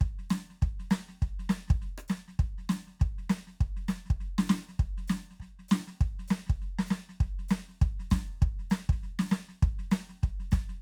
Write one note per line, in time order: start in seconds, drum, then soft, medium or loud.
0.01 kick loud
0.01 snare soft
0.19 kick soft
0.19 snare soft
0.30 snare loud
0.30 hi-hat pedal medium
0.50 snare soft
0.62 kick loud
0.62 snare soft
0.80 kick soft
0.80 snare soft
0.91 snare loud
0.91 hi-hat pedal medium
1.09 snare soft
1.22 kick medium
1.22 snare soft
1.40 kick soft
1.40 snare soft
1.50 snare loud
1.50 hi-hat pedal medium
1.68 kick loud
1.68 snare soft
1.82 snare soft
1.98 cross-stick medium
2.08 snare loud
2.08 hi-hat pedal medium
2.28 snare soft
2.40 kick loud
2.40 snare soft
2.59 snare soft
2.70 snare loud
2.70 hi-hat pedal medium
2.88 snare soft
3.00 kick loud
3.00 snare soft
3.19 kick soft
3.19 snare soft
3.30 snare loud
3.30 hi-hat pedal medium
3.48 snare soft
3.61 kick loud
3.61 snare soft
3.77 snare soft
3.89 snare loud
3.89 hi-hat pedal medium
4.06 snare soft
4.11 kick loud
4.21 snare soft
4.39 snare loud
4.48 snare loud
4.48 hi-hat pedal medium
4.69 snare soft
4.80 kick loud
4.80 snare soft
4.98 snare soft
5.08 snare loud
5.08 hi-hat pedal medium
5.31 snare soft
5.40 kick soft
5.40 snare soft
5.59 snare soft
5.69 snare loud
5.69 hi-hat pedal medium
5.88 snare medium
6.01 kick loud
6.01 snare soft
6.20 kick soft
6.20 snare soft
6.28 snare loud
6.28 hi-hat pedal medium
6.47 kick loud
6.47 snare soft
6.62 snare soft
6.79 snare loud
6.87 hi-hat pedal medium
6.91 snare loud
7.09 snare soft
7.21 kick loud
7.21 snare soft
7.39 snare soft
7.49 snare loud
7.49 hi-hat pedal medium
7.69 snare soft
7.82 kick loud
7.82 snare soft
8.00 snare soft
8.11 kick loud
8.11 snare loud
8.11 hi-hat pedal medium
8.42 kick loud
8.42 snare soft
8.60 snare soft
8.71 snare loud
8.71 hi-hat pedal medium
8.90 kick loud
8.90 snare soft
9.04 snare soft
9.20 snare loud
9.29 snare loud
9.29 hi-hat pedal medium
9.49 snare soft
9.63 kick loud
9.63 snare soft
9.79 snare soft
9.92 snare loud
9.92 hi-hat pedal medium
10.10 snare soft
10.23 kick medium
10.23 snare soft
10.40 snare soft
10.52 kick loud
10.52 snare loud
10.52 hi-hat pedal medium
10.70 snare soft